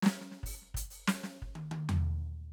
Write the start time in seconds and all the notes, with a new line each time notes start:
0.03 snare
0.06 snare
0.21 snare
0.32 snare
0.43 open hi-hat, kick
0.54 hi-hat pedal
0.62 snare
0.74 closed hi-hat, kick
0.91 hi-hat pedal
1.08 snare
1.24 snare
1.42 kick
1.56 closed hi-hat, high tom
1.71 high tom
1.89 floor tom